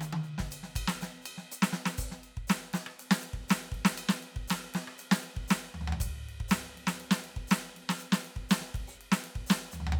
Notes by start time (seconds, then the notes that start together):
0.01 hi-hat pedal, high tom
0.13 high tom
0.24 hi-hat pedal, high tom
0.38 kick, snare
0.48 kick, hi-hat pedal, ride bell
0.63 snare
0.76 kick, ride bell
0.82 kick
0.88 snare
1.01 snare, hi-hat pedal
1.22 hi-hat pedal, ride bell
1.38 snare
1.52 hi-hat pedal, ride bell
1.62 snare
1.73 snare
1.86 snare
1.98 kick, hi-hat pedal, ride bell
2.04 kick
2.12 snare, hi-hat pedal
2.24 ride bell
2.37 kick
2.48 snare, hi-hat pedal, ride bell
2.74 snare, hi-hat pedal, ride
2.87 cross-stick
2.99 hi-hat pedal, ride
3.11 snare
3.21 hi-hat pedal, ride
3.34 kick
3.49 snare, hi-hat pedal, ride
3.61 snare
3.72 kick, ride
3.78 kick
3.85 snare
3.97 hi-hat pedal, ride bell
4.09 snare
4.19 hi-hat pedal
4.23 ride
4.36 kick
4.48 snare, hi-hat pedal, ride
4.74 snare, ride
4.88 cross-stick
4.98 hi-hat pedal, ride
5.12 snare
5.19 hi-hat pedal
5.24 ride
5.37 kick
5.48 snare, hi-hat pedal, ride
5.67 hi-hat pedal
5.74 floor tom
5.81 floor tom
5.88 floor tom
5.93 floor tom
6.00 kick, hi-hat pedal, ride
6.07 kick
6.29 ride
6.40 kick
6.49 snare, hi-hat pedal, ride
6.78 ride
6.87 snare
6.94 hi-hat pedal
7.00 ride
7.11 snare
7.19 snare
7.24 ride
7.37 kick
7.43 kick
7.48 snare, hi-hat pedal, ride
7.70 hi-hat pedal
7.77 ride
7.89 snare
7.99 hi-hat pedal, ride
8.12 snare
8.21 hi-hat pedal, ride
8.36 kick
8.49 snare, hi-hat pedal, ride
8.61 snare
8.75 kick, ride
8.80 kick
8.88 open hi-hat
8.92 hi-hat pedal
9.01 ride
9.12 snare
9.24 ride
9.36 kick
9.41 kick
9.47 snare, hi-hat pedal, ride
9.72 floor tom, hi-hat pedal
9.80 floor tom
9.87 floor tom
9.93 floor tom